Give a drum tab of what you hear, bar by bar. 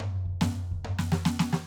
Snare     |---o---ooooo|
Floor tom |o--o--o-----|
Kick      |--o--o------|